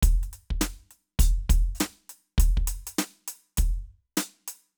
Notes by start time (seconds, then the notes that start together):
0.03 kick, closed hi-hat
0.23 closed hi-hat
0.33 closed hi-hat
0.50 kick
0.61 snare, closed hi-hat
0.91 closed hi-hat
1.19 closed hi-hat, kick
1.50 kick, closed hi-hat
1.75 hi-hat pedal
1.80 snare, closed hi-hat
2.09 closed hi-hat
2.38 kick, closed hi-hat
2.57 kick
2.67 closed hi-hat
2.87 closed hi-hat
2.98 snare, closed hi-hat
3.28 closed hi-hat
3.57 kick, closed hi-hat
4.17 closed hi-hat, snare
4.48 closed hi-hat